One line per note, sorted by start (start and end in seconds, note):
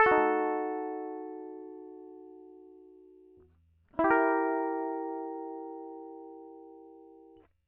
0.00 3.17 A4
0.07 3.50 F#4
0.12 3.44 D#4
3.99 7.45 E4
4.05 7.48 G4
4.11 7.45 A#4